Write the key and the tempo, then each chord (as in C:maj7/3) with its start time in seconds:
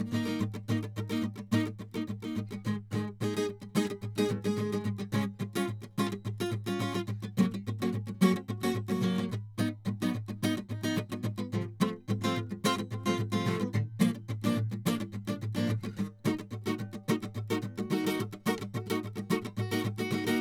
D# minor, 108 BPM
0.00 D#:(1,5)/5
2.65 G#:(1,5)
4.87 C#:maj/5
7.09 F#:maj
9.31 B:maj/5
11.54 F:maj
13.76 A#:maj/5
15.98 D#:min/5